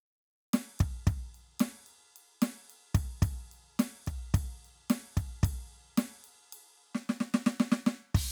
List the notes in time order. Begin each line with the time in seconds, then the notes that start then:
0.54 snare, ride
0.80 kick, ride
1.07 kick, ride
1.35 ride
1.60 snare, ride
1.86 ride
2.16 ride
2.42 snare, ride
2.70 ride
2.95 kick, ride
3.22 kick, ride
3.52 ride
3.79 snare, ride
4.07 kick, ride
4.34 kick, ride
4.65 ride
4.90 snare, ride
5.17 kick, ride
5.43 kick, ride
5.98 snare, ride
6.24 ride
6.53 ride
6.95 snare
7.09 snare
7.20 snare
7.34 snare
7.46 snare
7.60 snare
7.72 snare
7.87 snare
8.15 kick, crash